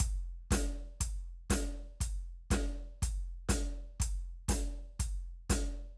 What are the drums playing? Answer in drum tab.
Hi-hat |o-x-x-x-|x-x-x-x-|x-x-x-x-|
Snare  |--o---o-|--o---o-|--o---o-|
Kick   |o-o-o-o-|o-o-o-o-|o-o-o-o-|